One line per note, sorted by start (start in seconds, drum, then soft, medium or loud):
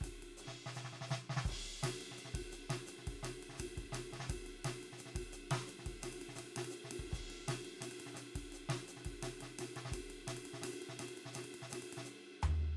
0.01 kick soft
0.01 hi-hat pedal medium
0.01 ride medium
0.22 ride medium
0.37 hi-hat pedal medium
0.37 ride medium
0.47 snare soft
0.66 snare medium
0.74 snare medium
0.74 hi-hat pedal medium
0.84 snare soft
0.92 snare soft
1.01 snare medium
1.08 snare medium
1.08 hi-hat pedal medium
1.29 snare medium
1.36 snare medium
1.44 kick medium
1.44 hi-hat pedal medium
1.44 ride medium
1.82 snare medium
1.82 hi-hat pedal medium
1.82 ride loud
2.01 ride medium
2.09 kick soft
2.09 snare soft
2.17 hi-hat pedal medium
2.17 ride medium
2.25 snare soft
2.34 kick soft
2.34 ride loud
2.52 hi-hat pedal medium
2.52 ride medium
2.69 snare medium
2.69 ride loud
2.86 hi-hat pedal medium
2.86 ride medium
2.98 snare soft
3.07 kick soft
3.07 ride medium
3.23 snare medium
3.23 hi-hat pedal medium
3.23 ride loud
3.43 ride medium
3.49 snare soft
3.52 snare soft
3.54 snare soft
3.56 kick soft
3.56 snare soft
3.56 hi-hat pedal medium
3.56 ride loud
3.77 kick soft
3.77 ride medium
3.92 snare medium
3.92 hi-hat pedal medium
3.92 ride loud
4.13 snare soft
4.13 ride medium
4.19 snare medium
4.22 snare soft
4.28 kick medium
4.28 hi-hat pedal medium
4.28 ride loud
4.46 ride medium
4.64 snare medium
4.64 hi-hat pedal medium
4.64 ride loud
4.83 ride medium
4.92 snare soft
4.98 hi-hat pedal medium
4.98 ride medium
5.06 snare soft
5.15 kick soft
5.15 ride medium
5.32 hi-hat pedal medium
5.32 ride medium
5.51 snare medium
5.51 ride loud
5.67 hi-hat pedal medium
5.67 ride medium
5.79 snare soft
5.86 kick soft
5.86 ride medium
6.02 snare soft
6.02 hi-hat pedal medium
6.02 ride loud
6.13 ride medium
6.21 ride medium
6.28 snare soft
6.35 snare soft
6.35 hi-hat pedal medium
6.35 ride medium
6.56 snare medium
6.56 ride loud
6.64 ride medium
6.70 hi-hat pedal medium
6.75 ride soft
6.84 snare soft
6.91 ride loud
6.99 kick soft
7.10 kick medium
7.10 hi-hat pedal medium
7.10 ride medium
7.30 ride medium
7.48 snare medium
7.48 hi-hat pedal medium
7.48 ride loud
7.65 ride medium
7.81 snare soft
7.81 hi-hat pedal medium
7.81 ride loud
7.91 ride medium
8.00 ride medium
8.06 snare soft
8.14 snare soft
8.14 hi-hat pedal medium
8.14 ride medium
8.35 kick soft
8.35 ride medium
8.52 hi-hat pedal medium
8.52 ride medium
8.69 snare medium
8.69 ride loud
8.88 hi-hat pedal medium
8.88 ride medium
8.96 snare soft
9.05 kick soft
9.05 ride medium
9.22 snare medium
9.22 hi-hat pedal medium
9.22 ride loud
9.41 snare soft
9.41 ride medium
9.58 snare soft
9.58 hi-hat pedal medium
9.58 ride loud
9.76 snare soft
9.76 ride medium
9.85 snare medium
9.92 kick soft
9.92 hi-hat pedal medium
9.92 ride loud
10.10 ride medium
10.27 snare medium
10.27 hi-hat pedal medium
10.27 ride loud
10.37 ride medium
10.45 ride medium
10.53 snare soft
10.62 snare soft
10.62 hi-hat pedal medium
10.62 ride loud
10.73 ride medium
10.82 ride medium
10.89 snare soft
10.99 snare soft
10.99 hi-hat pedal medium
10.99 ride loud
11.08 ride medium
11.17 ride medium
11.25 snare soft
11.33 snare soft
11.33 hi-hat pedal medium
11.33 ride loud
11.44 ride medium
11.54 ride medium
11.62 snare soft
11.70 snare soft
11.70 hi-hat pedal medium
11.70 ride loud
11.82 ride medium
11.93 ride medium
11.97 snare soft
12.05 hi-hat pedal medium
12.42 floor tom loud
12.42 hi-hat pedal medium